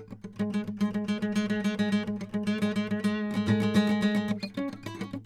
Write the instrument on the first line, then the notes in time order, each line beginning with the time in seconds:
acoustic guitar
0.40 G#3
0.55 G#3
0.69 G#3
0.81 G#3
0.95 G#3
1.09 G#3
1.23 G#3
1.37 G#3
1.51 G#3
1.65 G#3
1.80 G#3
1.94 G#3
2.08 G#3
2.22 G#3
2.35 G#3
2.48 G#3
2.63 G#3
2.77 G#3
2.92 G#3
3.05 G#3
3.35 G#3
3.49 G#3
3.64 G#3
3.77 G#3
3.93 G#3
4.03 G#3
4.18 G#3
4.58 C#4
4.70 C#4
4.87 E4
4.96 E4